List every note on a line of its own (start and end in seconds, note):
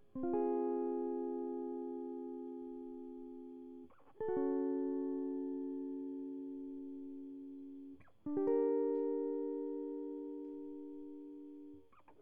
0.16 3.82 C4
0.23 3.24 F4
0.34 3.88 G#4
4.21 7.47 A4
4.29 7.87 F#4
4.37 7.98 C#4
8.27 11.81 D4
8.37 11.81 G4
8.47 11.78 A#4